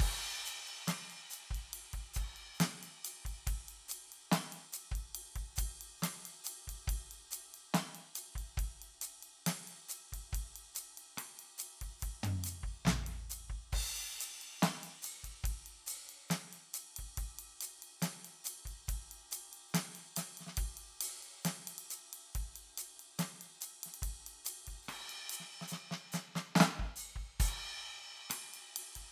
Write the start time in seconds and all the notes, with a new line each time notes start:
0.01 kick, crash, ride
0.46 hi-hat pedal, ride
0.68 ride
0.88 snare, ride
1.11 ride
1.31 hi-hat pedal, ride
1.51 kick
1.55 ride
1.74 ride
1.94 kick, ride
2.14 kick, hi-hat pedal, ride
2.37 ride
2.55 hi-hat pedal
2.61 snare, ride
2.84 ride
3.05 hi-hat pedal, ride
3.26 kick, ride
3.47 kick, hi-hat pedal, ride
3.69 ride
3.89 hi-hat pedal, ride
4.13 ride
4.32 snare, ride
4.53 ride
4.73 hi-hat pedal, ride
4.92 kick, ride
5.15 ride
5.36 kick, ride
5.57 kick, hi-hat pedal, ride
5.82 ride
5.99 snare, hi-hat pedal
6.04 ride
6.26 ride
6.45 hi-hat pedal, ride
6.68 kick, ride
6.88 kick, ride
7.12 ride
7.32 hi-hat pedal, ride
7.55 ride
7.75 snare, ride
7.95 ride
8.16 hi-hat pedal, ride
8.36 kick, ride
8.58 kick, ride
8.82 ride
9.02 hi-hat pedal, ride
9.23 ride
9.47 snare, ride
9.68 ride
9.89 hi-hat pedal, ride
10.13 kick, ride
10.33 kick, hi-hat pedal, ride
10.57 ride
10.76 hi-hat pedal, ride
10.98 ride
11.16 cross-stick, hi-hat pedal, ride
11.40 ride
11.59 hi-hat pedal, ride
11.82 kick, ride
12.00 kick, hi-hat pedal, ride
12.24 high tom, ride
12.45 hi-hat pedal, ride
12.64 kick
12.86 snare, floor tom
13.07 ride
13.30 hi-hat pedal, ride
13.50 kick
13.73 kick, hi-hat pedal, crash, ride
13.97 ride
14.21 hi-hat pedal, ride
14.42 ride
14.62 snare, hi-hat pedal, ride
14.84 ride
15.03 hi-hat pedal, ride
15.24 kick, ride
15.43 kick, hi-hat pedal, ride
15.67 ride
15.87 hi-hat pedal, ride
16.10 ride
16.29 snare, hi-hat pedal, ride
16.53 ride
16.74 hi-hat pedal, ride
16.94 hi-hat pedal, ride
16.99 kick
17.18 kick, hi-hat pedal, ride
17.39 ride
17.62 hi-hat pedal, ride
17.83 ride
18.00 snare, hi-hat pedal, ride
18.25 ride
18.45 hi-hat pedal, ride
18.66 kick, ride
18.88 kick, hi-hat pedal, ride
19.12 ride
19.32 hi-hat pedal, ride
19.54 ride
19.69 hi-hat pedal
19.75 snare, ride
19.96 ride
20.17 snare, hi-hat pedal, ride
20.38 snare, ride
20.47 snare
20.51 snare
20.56 kick, hi-hat pedal, ride
20.78 ride
21.01 hi-hat pedal, ride
21.23 ride
21.43 snare, hi-hat pedal, ride
21.68 ride
21.79 ride
21.91 hi-hat pedal, ride
22.14 ride
22.33 kick, hi-hat pedal, ride
22.54 hi-hat pedal, ride
22.78 hi-hat pedal, ride
23.00 ride
23.19 snare, hi-hat pedal, ride
23.42 ride
23.62 hi-hat pedal, ride
23.84 snare, ride
23.95 ride
24.02 kick, hi-hat pedal, ride
24.27 ride
24.46 hi-hat pedal, ride
24.68 kick, ride
24.84 hi-hat pedal
24.89 cross-stick, ride
25.10 ride
25.30 hi-hat pedal, ride
25.40 snare
25.62 snare
25.68 hi-hat pedal
25.72 snare
25.92 snare
26.13 snare, hi-hat pedal
26.36 snare
26.56 snare
26.61 snare
26.80 kick
26.97 hi-hat pedal
27.16 kick
27.40 open hi-hat, kick, ride
28.30 cross-stick, hi-hat pedal, ride
28.54 ride
28.77 ride
28.96 kick, ride